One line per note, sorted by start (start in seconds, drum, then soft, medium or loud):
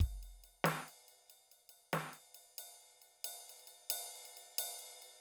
0.00 kick medium
0.00 ride soft
0.23 ride soft
0.44 ride soft
0.64 snare loud
0.64 ride medium
0.88 ride soft
1.08 ride soft
1.30 ride soft
1.51 ride soft
1.69 ride soft
1.93 snare medium
1.93 ride medium
2.13 ride soft
2.34 ride soft
2.58 ride medium
2.80 ride soft
3.02 ride soft
3.24 ride medium
3.49 ride soft
3.59 ride soft
3.67 ride soft
3.90 ride loud
4.15 ride soft
4.25 ride soft
4.37 ride soft
4.58 ride loud
4.79 ride soft
5.02 ride soft